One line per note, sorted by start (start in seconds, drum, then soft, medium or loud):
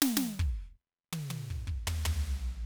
0.00 snare loud
0.17 snare loud
0.39 kick medium
1.13 mid tom loud
1.30 mid tom medium
1.50 kick soft
1.67 kick soft
1.87 floor tom loud
2.05 floor tom loud
2.20 hi-hat pedal soft